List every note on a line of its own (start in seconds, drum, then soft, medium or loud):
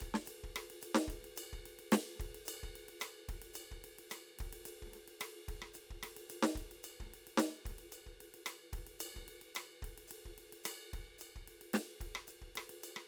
0.01 kick soft
0.01 ride medium
0.14 snare medium
0.26 hi-hat pedal soft
0.26 ride medium
0.44 kick soft
0.56 cross-stick medium
0.56 ride medium
0.70 ride medium
0.82 hi-hat pedal soft
0.82 ride medium
0.95 snare medium
1.08 kick soft
1.08 ride medium
1.22 snare soft
1.22 ride soft
1.26 snare soft
1.29 snare soft
1.31 snare soft
1.35 snare soft
1.35 hi-hat pedal medium
1.35 ride bell medium
1.53 kick soft
1.66 ride medium
1.79 ride soft
1.92 snare loud
1.92 hi-hat pedal medium
1.92 ride medium
2.16 kick soft
2.16 snare soft
2.21 snare soft
2.21 ride medium
2.29 snare soft
2.35 ride medium
2.46 hi-hat pedal medium
2.46 ride bell medium
2.63 kick soft
2.76 ride medium
2.89 ride soft
3.00 cross-stick medium
3.00 hi-hat pedal medium
3.00 ride bell medium
3.29 kick soft
3.29 snare soft
3.29 ride medium
3.42 ride medium
3.54 hi-hat pedal medium
3.54 ride bell medium
3.71 kick soft
3.71 snare soft
3.74 snare soft
3.84 ride medium
3.99 ride soft
4.10 cross-stick medium
4.10 hi-hat pedal soft
4.10 ride bell medium
4.36 kick soft
4.36 snare soft
4.36 ride medium
4.46 kick soft
4.53 ride medium
4.65 hi-hat pedal medium
4.65 ride medium
4.82 kick soft
4.82 snare soft
4.91 snare soft
4.91 ride soft
4.95 snare soft
5.08 ride soft
5.20 cross-stick medium
5.20 hi-hat pedal medium
5.20 ride medium
5.49 kick soft
5.49 ride soft
5.62 cross-stick medium
5.74 hi-hat pedal medium
5.74 ride medium
5.91 kick soft
6.03 cross-stick medium
6.03 ride medium
6.17 ride medium
6.30 hi-hat pedal medium
6.30 ride medium
6.43 snare medium
6.56 kick soft
6.56 ride soft
6.61 kick soft
6.71 snare soft
6.71 ride soft
6.83 hi-hat pedal soft
6.83 ride bell medium
7.00 kick soft
7.00 snare soft
7.06 snare soft
7.10 snare soft
7.10 ride medium
7.27 ride soft
7.38 snare loud
7.38 hi-hat pedal soft
7.38 ride bell medium
7.66 kick soft
7.66 snare soft
7.66 ride medium
7.71 kick soft
7.77 snare soft
7.77 ride soft
7.81 snare soft
7.92 hi-hat pedal soft
7.92 ride bell medium
8.07 kick soft
8.21 ride soft
8.34 ride soft
8.46 cross-stick medium
8.46 hi-hat pedal medium
8.46 ride bell medium
8.73 kick soft
8.73 snare soft
8.73 ride medium
8.79 kick soft
8.87 ride soft
9.00 hi-hat pedal medium
9.00 ride bell medium
9.14 kick soft
9.14 snare soft
9.17 snare soft
9.22 snare soft
9.28 ride medium
9.42 ride soft
9.55 cross-stick medium
9.55 hi-hat pedal medium
9.55 ride bell medium
9.82 kick soft
9.82 snare soft
9.82 ride medium
9.98 ride soft
10.08 hi-hat pedal soft
10.08 ride medium
10.26 kick soft
10.38 ride soft
10.53 ride medium
10.64 cross-stick medium
10.64 hi-hat pedal medium
10.64 ride bell medium
10.94 kick soft
10.94 ride soft
10.99 kick soft
11.19 hi-hat pedal soft
11.19 ride bell medium
11.36 kick soft
11.48 ride soft
11.61 ride soft
11.74 snare medium
11.74 hi-hat pedal medium
11.74 ride medium
12.01 kick soft
12.01 ride medium
12.06 kick soft
12.15 cross-stick medium
12.27 hi-hat pedal medium
12.27 ride medium
12.42 kick soft
12.56 cross-stick medium
12.56 ride medium
12.70 ride medium
12.84 hi-hat pedal soft
12.84 ride bell medium
12.97 cross-stick medium